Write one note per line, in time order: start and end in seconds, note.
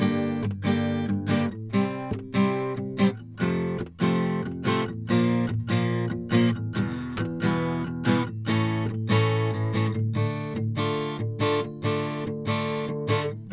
0.01 0.43 G2
0.01 0.51 D3
0.01 0.48 G3
0.01 0.50 A#3
0.01 0.47 D4
0.01 0.46 G4
0.44 0.65 G2
0.65 1.10 G2
0.65 1.07 D3
0.65 1.10 G3
0.65 1.10 A#3
0.65 1.10 D4
0.65 1.13 G4
1.07 1.28 G2
1.07 1.30 D3
1.28 1.56 G2
1.28 1.43 D3
1.28 1.52 G3
1.28 1.53 A#3
1.28 1.51 D4
1.33 1.48 G4
1.44 1.50 C#3
1.75 2.13 C3
1.75 2.15 G3
1.75 2.15 C4
2.13 2.34 C3
2.35 2.77 C3
2.35 2.77 G3
2.35 2.79 C4
2.35 2.66 E4
2.79 3.00 C3
3.00 3.15 C3
3.00 3.13 G3
3.00 3.15 C4
3.19 3.41 E2
3.41 3.80 F2
3.41 3.81 C3
3.41 3.82 F3
3.41 3.90 A3
3.41 3.62 C4
3.80 4.01 E2
4.01 4.44 F2
4.01 4.44 C3
4.01 4.46 F3
4.01 4.46 A3
4.01 4.46 C4
4.44 4.65 F2
4.44 4.66 C3
4.65 4.87 F2
4.65 4.83 C3
4.65 4.90 F3
4.65 4.92 A3
4.69 4.89 C4
4.84 4.99 A#2
4.90 5.10 E2
5.10 5.48 E2
5.10 5.48 A#2
5.10 5.50 F3
5.10 5.51 A#3
5.10 5.50 D4
5.49 5.70 E2
5.49 5.71 A2
5.70 6.10 E2
5.70 6.11 A#2
5.70 6.10 F3
5.70 6.11 A#3
5.74 6.02 D4
6.11 6.31 E2
6.11 6.31 A#2
6.32 6.46 F2
6.32 6.49 A#2
6.32 6.55 F3
6.32 6.56 A#3
6.36 6.55 D4
6.50 6.63 A#2
6.57 6.76 E2
6.76 7.18 E2
6.76 7.17 B2
6.76 7.00 B3
7.18 7.41 E2
7.18 7.31 B2
7.41 7.85 E2
7.41 7.86 B2
7.41 7.87 E3
7.46 7.89 B3
7.46 7.88 E4
7.86 8.06 E2
7.86 8.07 B2
8.06 8.26 E2
8.06 8.22 B2
8.06 8.28 E3
8.10 8.29 B3
8.10 8.28 E4
8.22 8.33 A#2
8.29 8.38 F2
8.48 8.85 E2
8.48 8.90 A2
8.48 8.90 E3
8.48 8.91 A3
8.48 8.89 C#4
8.52 8.90 E4
8.91 9.09 A2
9.10 9.51 A2
9.10 9.52 E3
9.10 9.76 A3
9.10 9.77 C#4
9.10 9.55 E4
9.52 9.74 A2
9.52 9.74 E3
9.75 9.95 A2
9.75 9.91 E3
9.75 9.93 A3
9.75 9.92 C#4
9.96 10.13 A2
9.96 10.14 D3
10.15 10.45 A2
10.15 10.57 D3
10.15 10.62 A3
10.15 10.62 D4
10.57 10.73 A2
10.57 10.77 D3
10.77 11.20 D3
10.77 11.22 A3
10.77 11.22 D4
10.77 11.23 F4
11.20 11.37 A2
11.20 11.41 D3
11.41 11.64 D3
11.41 11.64 A3
11.41 11.65 D4
11.41 11.66 F4
11.64 11.84 D3
11.84 12.26 D3
11.84 12.26 A3
11.84 12.29 D4
11.84 12.29 F4
12.27 12.48 D3
12.27 12.46 A3
12.47 12.89 D3
12.47 12.89 A3
12.47 12.91 D4
12.47 12.92 F4
12.89 13.09 D3
12.89 13.08 A3
13.09 13.33 D3
13.09 13.30 A3
13.09 13.26 D4
13.09 13.25 F4